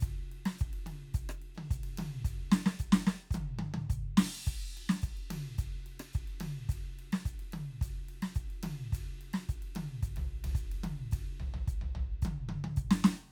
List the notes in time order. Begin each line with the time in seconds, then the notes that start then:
0.01 kick, hi-hat pedal, ride
0.32 ride
0.46 snare, ride
0.59 kick, hi-hat pedal
0.73 ride
0.86 high tom, ride
1.14 kick, hi-hat pedal, ride
1.29 cross-stick
1.42 ride
1.55 high tom, ride
1.71 kick, hi-hat pedal
1.84 ride
1.98 high tom, ride
2.25 kick, hi-hat pedal, ride
2.52 snare
2.66 snare
2.79 kick, hi-hat pedal
2.92 snare
3.07 snare
3.31 kick, hi-hat pedal, high tom
3.59 high tom
3.74 high tom
3.90 kick, hi-hat pedal
4.17 snare, crash
4.46 kick, hi-hat pedal, ride
4.77 hi-hat pedal, ride
4.89 snare
5.02 kick, hi-hat pedal, ride
5.17 ride
5.31 high tom, ride
5.58 kick, hi-hat pedal, ride
5.86 ride
6.00 cross-stick, ride
6.13 kick, hi-hat pedal
6.28 ride
6.40 high tom, ride
6.69 kick, hi-hat pedal, ride
6.99 ride
7.13 snare, ride
7.25 kick, hi-hat pedal
7.40 ride
7.53 high tom, ride
7.81 kick, hi-hat pedal, ride
8.09 ride
8.22 snare, ride
8.35 kick, hi-hat pedal
8.50 ride
8.63 high tom, ride
8.93 kick, hi-hat pedal, ride
9.21 ride
9.34 snare, ride
9.49 kick, hi-hat pedal
9.63 ride
9.75 high tom, ride
10.03 kick, hi-hat pedal, ride
10.16 floor tom, ride
10.44 floor tom, ride
10.55 kick, hi-hat pedal
10.72 ride
10.84 high tom, ride
11.11 kick, hi-hat pedal, ride
11.40 floor tom
11.54 floor tom
11.68 kick, hi-hat pedal
11.81 floor tom
11.95 floor tom
12.22 kick, hi-hat pedal, high tom
12.49 high tom
12.64 high tom
12.77 kick, hi-hat pedal
12.91 snare
13.04 snare